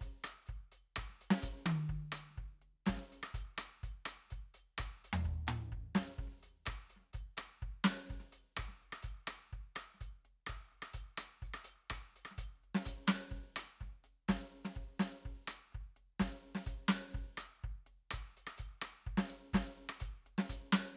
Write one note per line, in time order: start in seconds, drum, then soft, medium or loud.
0.01 closed hi-hat soft
0.01 kick soft
0.24 closed hi-hat loud
0.24 cross-stick medium
0.47 closed hi-hat soft
0.47 kick soft
0.72 closed hi-hat soft
0.96 closed hi-hat medium
0.96 kick soft
0.96 cross-stick medium
1.09 snare soft
1.21 closed hi-hat soft
1.31 snare loud
1.42 closed hi-hat loud
1.42 kick soft
1.66 cross-stick medium
1.66 high tom loud
1.89 kick soft
1.89 closed hi-hat soft
2.12 closed hi-hat loud
2.12 cross-stick medium
2.30 snare soft
2.37 kick soft
2.37 closed hi-hat soft
2.42 snare soft
2.62 closed hi-hat soft
2.86 closed hi-hat medium
2.86 kick soft
2.86 snare medium
2.97 snare soft
3.12 closed hi-hat soft
3.23 cross-stick medium
3.34 closed hi-hat medium
3.34 kick soft
3.58 closed hi-hat medium
3.58 cross-stick medium
3.79 closed hi-hat soft
3.79 kick soft
3.79 hi-hat pedal soft
4.05 closed hi-hat loud
4.05 cross-stick medium
4.30 closed hi-hat soft
4.30 kick soft
4.54 closed hi-hat medium
4.78 closed hi-hat medium
4.78 kick soft
4.78 cross-stick medium
5.04 closed hi-hat medium
5.13 floor tom loud
5.25 kick soft
5.25 closed hi-hat medium
5.47 closed hi-hat medium
5.47 mid tom medium
5.72 kick soft
5.72 closed hi-hat soft
5.95 closed hi-hat medium
5.95 snare medium
6.18 kick soft
6.18 closed hi-hat soft
6.27 snare soft
6.33 snare soft
6.43 closed hi-hat soft
6.66 closed hi-hat medium
6.66 kick soft
6.66 cross-stick medium
6.90 closed hi-hat soft
6.96 snare soft
7.00 snare soft
7.13 closed hi-hat soft
7.13 kick soft
7.37 closed hi-hat medium
7.37 cross-stick medium
7.62 kick soft
7.62 closed hi-hat soft
7.84 closed hi-hat medium
7.84 snare loud
7.90 snare soft
8.09 closed hi-hat soft
8.09 kick soft
8.20 snare soft
8.24 snare soft
8.32 closed hi-hat soft
8.57 open hi-hat medium
8.57 kick soft
8.57 cross-stick medium
8.68 snare soft
8.82 closed hi-hat soft
8.92 cross-stick medium
9.03 closed hi-hat medium
9.03 kick soft
9.27 closed hi-hat medium
9.27 cross-stick medium
9.53 open hi-hat soft
9.53 kick soft
9.76 closed hi-hat medium
9.76 cross-stick medium
9.94 snare soft
10.01 closed hi-hat soft
10.01 kick soft
10.25 closed hi-hat soft
10.47 open hi-hat medium
10.47 kick soft
10.47 cross-stick medium
10.72 closed hi-hat soft
10.82 cross-stick medium
10.94 closed hi-hat medium
10.94 kick soft
11.18 closed hi-hat loud
11.18 cross-stick medium
11.42 open hi-hat soft
11.42 kick soft
11.54 cross-stick medium
11.64 closed hi-hat medium
11.90 open hi-hat medium
11.90 kick soft
11.90 cross-stick medium
12.16 closed hi-hat soft
12.25 cross-stick medium
12.31 snare soft
12.38 closed hi-hat medium
12.38 kick soft
12.64 open hi-hat soft
12.75 snare medium
12.86 closed hi-hat loud
12.86 kick soft
13.07 closed hi-hat loud
13.07 snare medium
13.31 kick soft
13.56 closed hi-hat loud
13.56 cross-stick medium
13.80 kick soft
13.80 snare soft
13.80 closed hi-hat soft
13.87 snare soft
14.04 closed hi-hat medium
14.28 closed hi-hat loud
14.28 kick soft
14.28 snare medium
14.40 snare soft
14.52 closed hi-hat soft
14.65 snare medium
14.75 kick soft
14.75 closed hi-hat medium
15.00 closed hi-hat loud
15.00 snare medium
15.25 kick soft
15.25 closed hi-hat soft
15.48 closed hi-hat loud
15.48 cross-stick medium
15.73 kick soft
15.73 closed hi-hat soft
15.96 closed hi-hat soft
16.20 closed hi-hat loud
16.20 kick soft
16.20 snare medium
16.44 open hi-hat soft
16.55 snare medium
16.66 closed hi-hat medium
16.66 kick soft
16.88 closed hi-hat medium
16.88 snare medium
17.10 snare soft
17.10 closed hi-hat soft
17.14 kick soft
17.37 closed hi-hat medium
17.37 cross-stick medium
17.63 kick soft
17.63 closed hi-hat soft
17.87 closed hi-hat soft
18.11 closed hi-hat loud
18.11 kick soft
18.11 cross-stick medium
18.37 closed hi-hat soft
18.47 cross-stick medium
18.58 closed hi-hat medium
18.58 kick soft
18.82 closed hi-hat medium
18.82 cross-stick medium
19.06 kick soft
19.06 closed hi-hat soft
19.18 snare medium
19.29 open hi-hat medium
19.54 closed hi-hat medium
19.54 kick soft
19.54 snare medium
19.77 closed hi-hat soft
19.89 cross-stick medium
20.00 closed hi-hat medium
20.00 kick soft
20.26 open hi-hat soft
20.38 snare medium
20.50 closed hi-hat medium
20.50 kick soft
20.73 closed hi-hat loud
20.73 snare loud